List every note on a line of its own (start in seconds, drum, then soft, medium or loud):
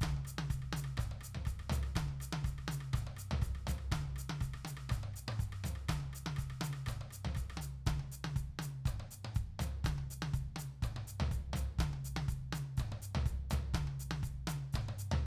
0.01 kick medium
0.01 cross-stick medium
0.01 hi-hat pedal medium
0.01 high tom loud
0.09 high tom medium
0.17 high tom soft
0.25 cross-stick soft
0.25 hi-hat pedal medium
0.39 high tom loud
0.50 kick medium
0.50 cross-stick soft
0.50 hi-hat pedal medium
0.62 cross-stick soft
0.73 hi-hat pedal medium
0.73 high tom loud
0.84 cross-stick soft
0.97 kick medium
0.97 cross-stick medium
0.97 hi-hat pedal medium
0.97 mid tom medium
1.11 mid tom medium
1.21 cross-stick soft
1.21 hi-hat pedal medium
1.35 floor tom medium
1.46 kick medium
1.46 cross-stick soft
1.46 hi-hat pedal medium
1.60 cross-stick soft
1.70 floor tom loud
1.70 hi-hat pedal medium
1.83 cross-stick soft
1.96 kick medium
1.96 cross-stick medium
1.96 hi-hat pedal medium
1.96 high tom loud
2.09 high tom soft
2.11 high tom soft
2.21 cross-stick soft
2.21 hi-hat pedal medium
2.33 high tom loud
2.45 kick medium
2.45 cross-stick soft
2.45 hi-hat pedal medium
2.59 cross-stick soft
2.68 hi-hat pedal medium
2.68 high tom loud
2.81 cross-stick soft
2.94 kick medium
2.94 cross-stick medium
2.94 hi-hat pedal medium
2.94 mid tom loud
3.07 mid tom medium
3.17 cross-stick soft
3.17 hi-hat pedal medium
3.31 floor tom loud
3.42 kick medium
3.42 cross-stick soft
3.42 hi-hat pedal medium
3.55 cross-stick soft
3.67 floor tom loud
3.67 hi-hat pedal medium
3.79 cross-stick soft
3.92 kick medium
3.92 cross-stick medium
3.92 hi-hat pedal medium
3.92 high tom loud
4.02 high tom soft
4.05 high tom soft
4.08 high tom soft
4.16 cross-stick soft
4.16 hi-hat pedal medium
4.30 high tom loud
4.41 kick medium
4.41 cross-stick soft
4.41 hi-hat pedal medium
4.54 cross-stick soft
4.65 hi-hat pedal medium
4.65 high tom loud
4.77 cross-stick medium
4.90 kick medium
4.90 cross-stick medium
4.90 hi-hat pedal medium
4.90 mid tom loud
5.03 mid tom medium
5.14 cross-stick soft
5.14 hi-hat pedal medium
5.28 cross-stick soft
5.28 mid tom loud
5.39 kick soft
5.39 hi-hat pedal medium
5.53 cross-stick soft
5.64 floor tom loud
5.64 hi-hat pedal medium
5.76 cross-stick soft
5.89 kick medium
5.89 cross-stick medium
5.89 hi-hat pedal medium
5.89 high tom loud
6.00 high tom soft
6.03 high tom soft
6.08 high tom soft
6.13 cross-stick soft
6.13 hi-hat pedal medium
6.27 high tom loud
6.37 kick soft
6.37 cross-stick medium
6.37 hi-hat pedal medium
6.50 cross-stick soft
6.61 hi-hat pedal medium
6.61 high tom loud
6.73 cross-stick soft
6.87 kick soft
6.87 cross-stick medium
6.87 hi-hat pedal medium
6.87 mid tom medium
7.01 mid tom medium
7.11 cross-stick soft
7.11 hi-hat pedal medium
7.25 floor tom loud
7.35 kick soft
7.35 cross-stick soft
7.35 hi-hat pedal medium
7.50 cross-stick soft
7.57 high tom loud
7.62 hi-hat pedal medium
7.86 kick medium
7.86 hi-hat pedal medium
7.86 high tom loud
8.00 high tom medium
8.03 high tom soft
8.12 hi-hat pedal medium
8.25 high tom loud
8.36 kick medium
8.36 hi-hat pedal medium
8.59 hi-hat pedal medium
8.59 high tom loud
8.86 kick medium
8.86 hi-hat pedal medium
8.86 mid tom medium
9.00 mid tom medium
9.11 hi-hat pedal medium
9.25 mid tom loud
9.35 kick medium
9.35 hi-hat pedal medium
9.60 floor tom loud
9.60 hi-hat pedal medium
9.85 kick medium
9.85 hi-hat pedal medium
9.85 high tom loud
9.98 high tom soft
10.02 high tom soft
10.11 hi-hat pedal medium
10.22 high tom loud
10.34 kick medium
10.34 hi-hat pedal medium
10.56 hi-hat pedal medium
10.56 high tom loud
10.83 kick medium
10.83 hi-hat pedal medium
10.83 mid tom medium
10.97 mid tom medium
11.08 hi-hat pedal medium
11.20 floor tom loud
11.31 kick medium
11.31 hi-hat pedal medium
11.54 floor tom loud
11.54 hi-hat pedal medium
11.79 kick medium
11.79 hi-hat pedal medium
11.79 high tom loud
11.93 high tom medium
12.05 hi-hat pedal medium
12.17 high tom loud
12.29 kick medium
12.29 hi-hat pedal medium
12.53 hi-hat pedal medium
12.53 high tom loud
12.77 kick medium
12.77 hi-hat pedal medium
12.77 mid tom loud
12.92 mid tom medium
13.02 hi-hat pedal medium
13.15 floor tom loud
13.26 kick medium
13.26 hi-hat pedal medium
13.50 floor tom loud
13.50 hi-hat pedal medium
13.74 kick medium
13.74 hi-hat pedal medium
13.74 high tom loud
13.88 high tom medium
13.91 high tom soft
14.00 hi-hat pedal medium
14.11 high tom loud
14.23 kick medium
14.23 hi-hat pedal medium
14.48 hi-hat pedal medium
14.48 high tom loud
14.73 kick medium
14.73 hi-hat pedal medium
14.73 mid tom loud
14.89 mid tom medium
14.99 hi-hat pedal medium
15.12 floor tom loud